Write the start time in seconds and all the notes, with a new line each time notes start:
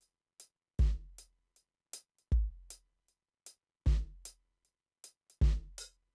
0.01 closed hi-hat, hi-hat pedal
0.40 closed hi-hat
0.79 kick, snare, closed hi-hat
1.19 closed hi-hat
1.56 closed hi-hat
1.94 closed hi-hat
2.19 closed hi-hat
2.32 kick
2.71 closed hi-hat
3.09 closed hi-hat
3.47 closed hi-hat
3.86 kick, snare, closed hi-hat
4.25 closed hi-hat
4.65 closed hi-hat
5.04 closed hi-hat
5.30 closed hi-hat
5.42 kick, snare
5.78 open hi-hat